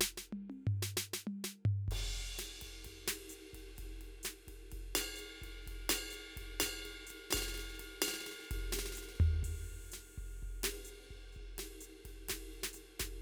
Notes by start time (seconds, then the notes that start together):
0.01 snare
0.18 snare
0.33 mid tom
0.50 open hi-hat, high tom
0.67 floor tom
0.83 snare
0.97 snare
1.14 snare
1.27 mid tom
1.44 snare
1.65 floor tom
1.88 kick, ride
1.97 snare
2.38 snare, hi-hat pedal, ride
2.62 kick, snare, ride
2.67 kick
2.79 snare
2.83 kick, hi-hat pedal, ride
2.91 kick
3.08 snare, ride
3.19 snare
3.30 snare, hi-hat pedal, ride
3.54 kick, ride
3.58 kick
3.77 kick, hi-hat pedal, ride
3.83 kick
4.01 ride
4.23 snare, hi-hat pedal, ride
4.48 kick, ride
4.71 kick, hi-hat pedal, ride
4.95 snare, ride bell
5.16 hi-hat pedal, ride
5.42 kick, ride
5.47 kick
5.63 hi-hat pedal
5.67 kick, ride
5.72 kick
5.90 snare, ride bell
5.99 snare
6.11 hi-hat pedal, ride
6.16 snare
6.22 snare
6.25 snare
6.29 snare
6.37 kick, ride
6.42 kick
6.59 snare, hi-hat pedal, ride bell
6.63 kick
6.68 kick
6.85 ride
7.07 hi-hat pedal, ride
7.31 kick, snare, ride bell
7.37 kick, snare
7.42 snare
7.48 snare
7.54 snare, ride
7.59 snare
7.65 snare
7.69 snare
7.74 snare
7.79 snare, ride
8.02 snare, hi-hat pedal, ride bell
8.08 snare
8.14 snare
8.21 snare
8.26 snare, ride
8.31 snare
8.36 snare
8.40 snare
8.44 snare
8.49 kick, snare, hi-hat pedal, ride
8.57 kick
8.73 snare, ride
8.79 snare
8.86 snare
8.92 snare, hi-hat pedal
8.98 snare, ride
9.03 snare
9.09 snare
9.15 snare
9.20 kick, floor tom
9.43 kick, crash
9.49 kick
9.92 snare, hi-hat pedal
10.18 kick
10.38 hi-hat pedal
10.43 kick
10.48 kick
10.64 snare, ride
10.74 snare
10.85 hi-hat pedal
10.92 snare
11.11 kick
11.16 kick
11.33 kick, hi-hat pedal
11.41 kick
11.58 snare, ride
11.81 snare, hi-hat pedal, ride
12.05 kick, ride
12.28 kick, snare, hi-hat pedal, ride
12.36 kick
12.54 ride
12.64 snare
12.73 hi-hat pedal, ride
13.00 kick, snare, ride
13.06 kick